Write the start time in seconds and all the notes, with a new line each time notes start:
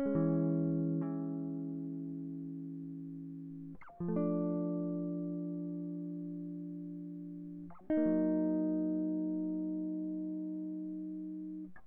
0.00 C#4
0.07 G#3
0.16 E3
4.02 F3
4.09 A3
4.17 D4
7.91 D#4
7.98 A#3
8.07 F#3